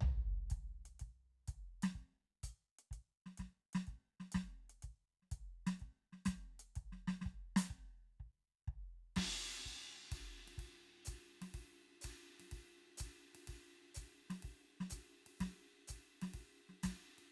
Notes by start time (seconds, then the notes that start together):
0.01 kick, floor tom
0.50 kick, closed hi-hat
0.86 closed hi-hat
1.00 kick, closed hi-hat
1.48 kick, closed hi-hat
1.83 snare, closed hi-hat
1.95 kick
2.44 closed hi-hat, kick
2.79 closed hi-hat
2.91 kick, closed hi-hat
3.26 snare
3.38 kick, snare, closed hi-hat
3.73 snare, closed hi-hat
3.87 kick, closed hi-hat
4.20 snare
4.32 kick, snare, closed hi-hat
4.70 closed hi-hat
4.83 kick, closed hi-hat
5.22 snare
5.32 kick, closed hi-hat
5.67 snare, closed hi-hat
5.80 kick, closed hi-hat
6.13 snare
6.26 closed hi-hat, kick, snare
6.60 closed hi-hat
6.76 kick, closed hi-hat
6.92 snare
7.08 snare
7.21 snare
7.26 kick
7.56 open hi-hat, snare
7.70 kick
8.20 kick
8.68 kick
9.16 kick, snare, ride
9.66 kick, ride
10.12 kick, hi-hat pedal, ride
10.46 snare, ride
10.58 kick, ride
11.05 kick, hi-hat pedal, ride
11.42 snare, ride
11.54 kick, ride
12.02 kick, hi-hat pedal, ride
12.40 snare, ride
12.52 kick, ride
12.98 kick, hi-hat pedal, ride
13.35 ride
13.48 kick, ride
13.95 kick, hi-hat pedal, ride
14.30 snare, ride
14.43 kick, ride
14.80 snare
14.90 kick, hi-hat pedal, ride
15.27 ride
15.37 kick, snare, hi-hat pedal, ride
15.88 kick, hi-hat pedal, ride
16.22 snare, ride
16.34 kick, ride
16.69 snare
16.83 kick, snare, hi-hat pedal, ride
17.19 ride